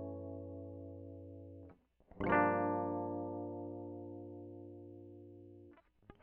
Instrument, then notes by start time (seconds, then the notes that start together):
electric guitar
2.22 G2 B2
2.27 F3 A#3
2.32 D4